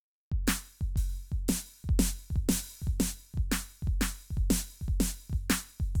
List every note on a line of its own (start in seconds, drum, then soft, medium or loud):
0.32 kick medium
0.47 open hi-hat medium
0.47 snare loud
0.81 kick medium
0.96 open hi-hat medium
0.96 kick medium
1.32 kick medium
1.48 open hi-hat loud
1.48 snare loud
1.84 kick soft
1.89 kick medium
1.99 open hi-hat medium
1.99 snare loud
2.30 kick soft
2.36 kick medium
2.49 open hi-hat loud
2.49 snare loud
2.82 kick soft
2.87 kick medium
3.00 open hi-hat medium
3.00 snare loud
3.34 kick soft
3.37 kick medium
3.51 open hi-hat medium
3.51 snare loud
3.57 open hi-hat soft
3.82 kick soft
3.87 kick medium
4.01 open hi-hat medium
4.01 snare loud
4.30 kick soft
4.37 kick medium
4.50 open hi-hat medium
4.50 snare loud
4.81 kick soft
4.88 kick medium
5.00 open hi-hat medium
5.00 snare loud
5.30 kick soft
5.33 kick medium
5.50 open hi-hat medium
5.50 snare loud
5.80 kick medium
5.95 kick medium
5.95 crash medium